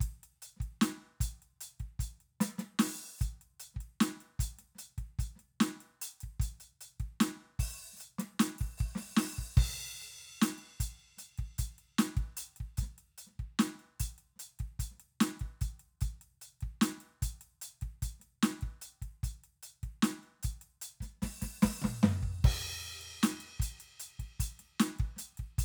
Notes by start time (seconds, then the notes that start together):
0.01 kick, closed hi-hat
0.24 closed hi-hat
0.43 closed hi-hat
0.57 kick, snare
0.62 closed hi-hat
0.82 closed hi-hat, snare
1.21 closed hi-hat, kick
1.43 closed hi-hat
1.61 closed hi-hat
1.80 kick, snare, closed hi-hat
2.00 closed hi-hat, kick
2.21 closed hi-hat
2.41 closed hi-hat, snare
2.59 snare, closed hi-hat
2.80 open hi-hat, snare
3.19 closed hi-hat, kick, hi-hat pedal
3.42 closed hi-hat
3.60 closed hi-hat
3.75 kick, snare
3.81 closed hi-hat
4.01 closed hi-hat, snare
4.21 closed hi-hat
4.40 closed hi-hat, kick
4.59 snare, closed hi-hat
4.75 closed hi-hat, snare
4.98 kick, closed hi-hat
5.19 closed hi-hat, kick, snare
5.36 snare, closed hi-hat
5.61 closed hi-hat, snare
5.81 closed hi-hat
6.02 closed hi-hat
6.21 kick, closed hi-hat
6.40 closed hi-hat, kick, snare
6.61 closed hi-hat
6.81 closed hi-hat
7.00 kick, closed hi-hat
7.21 closed hi-hat, snare
7.60 open hi-hat, kick
7.79 open hi-hat
7.94 snare
7.96 snare, hi-hat pedal
8.01 closed hi-hat
8.19 snare, closed hi-hat
8.40 closed hi-hat, snare
8.59 kick, open hi-hat
8.78 open hi-hat, kick
8.96 open hi-hat, snare
9.17 open hi-hat, snare
9.39 kick
9.58 kick, crash
9.97 hi-hat pedal
10.02 closed hi-hat
10.42 closed hi-hat, snare
10.59 closed hi-hat
10.81 closed hi-hat, kick
11.00 closed hi-hat
11.18 closed hi-hat, snare
11.38 kick, closed hi-hat
11.59 closed hi-hat, kick
11.79 closed hi-hat
11.99 closed hi-hat, snare
12.17 kick, closed hi-hat
12.37 closed hi-hat
12.57 kick, closed hi-hat
12.78 closed hi-hat, kick
12.82 snare
12.99 closed hi-hat
13.18 closed hi-hat
13.27 snare
13.33 snare
13.40 kick, closed hi-hat
13.60 closed hi-hat, snare
13.80 closed hi-hat
14.00 closed hi-hat, kick
14.19 closed hi-hat
14.36 closed hi-hat, snare
14.60 kick, closed hi-hat
14.80 closed hi-hat, kick
14.92 snare
14.95 snare
15.00 closed hi-hat
15.21 closed hi-hat, snare
15.40 kick, closed hi-hat
15.62 closed hi-hat, kick
15.80 closed hi-hat
16.01 closed hi-hat, kick
16.22 closed hi-hat
16.42 closed hi-hat
16.61 kick, closed hi-hat
16.82 closed hi-hat, snare
17.01 closed hi-hat
17.23 closed hi-hat, kick
17.42 closed hi-hat
17.62 closed hi-hat
17.82 kick, closed hi-hat
18.03 closed hi-hat, kick
18.20 snare, closed hi-hat
18.43 closed hi-hat, snare
18.62 kick, closed hi-hat
18.82 closed hi-hat
19.02 kick, closed hi-hat
19.24 closed hi-hat, kick
19.44 closed hi-hat
19.63 closed hi-hat
19.84 kick, closed hi-hat
20.03 closed hi-hat, snare
20.24 closed hi-hat
20.40 closed hi-hat, snare
20.45 kick
20.62 closed hi-hat
20.82 closed hi-hat
21.01 closed hi-hat, kick, snare
21.23 open hi-hat, kick, snare
21.42 kick, snare, open hi-hat
21.63 open hi-hat, kick, snare
21.82 kick, snare, mid tom
22.04 snare, floor tom
22.23 kick
22.45 kick, crash
22.84 closed hi-hat
23.02 closed hi-hat
23.24 closed hi-hat, snare
23.41 closed hi-hat
23.60 closed hi-hat, kick
23.81 closed hi-hat
24.00 closed hi-hat
24.20 kick, snare, closed hi-hat
24.40 closed hi-hat, kick
24.60 snare, closed hi-hat
24.80 closed hi-hat, snare
24.99 kick, closed hi-hat
25.17 closed hi-hat, snare
25.38 kick, closed hi-hat
25.59 closed hi-hat, kick